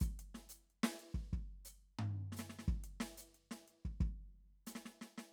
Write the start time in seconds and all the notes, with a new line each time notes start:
0.01 kick, hi-hat pedal
0.20 open hi-hat
0.35 snare
0.50 hi-hat pedal
0.71 closed hi-hat
0.84 snare
1.00 closed hi-hat
1.15 kick
1.34 kick
1.66 hi-hat pedal
1.99 floor tom
2.33 snare
2.38 snare, hi-hat pedal
2.50 snare
2.59 snare
2.69 kick
2.84 closed hi-hat
3.01 snare
3.18 hi-hat pedal
3.35 closed hi-hat
3.52 snare
3.68 closed hi-hat
3.86 kick
4.01 kick
4.67 snare, hi-hat pedal
4.76 snare
4.86 snare
5.02 snare
5.18 snare